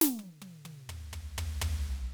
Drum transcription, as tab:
SD |o---------------|
T1 |-go-------------|
T2 |---o------------|
FT |----oooo--------|